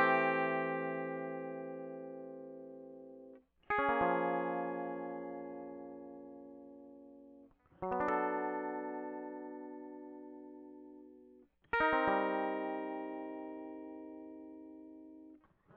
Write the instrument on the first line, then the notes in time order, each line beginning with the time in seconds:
electric guitar
0.00 G4
3.71 G#4
3.79 C#4
3.90 A#3
4.03 F3
7.84 F#3
7.92 B3
8.01 D4
8.09 A4
11.66 D4
11.74 A#4
11.81 D#4
11.94 C4
12.09 G3